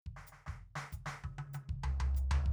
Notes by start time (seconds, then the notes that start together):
0.06 kick
0.16 snare
0.27 hi-hat pedal
0.32 snare
0.46 kick, snare
0.75 snare
0.92 kick, hi-hat pedal
1.06 snare
1.24 kick, high tom
1.38 high tom
1.53 hi-hat pedal, high tom
1.69 kick
1.83 floor tom
2.00 floor tom
2.14 kick, hi-hat pedal
2.31 floor tom
2.46 kick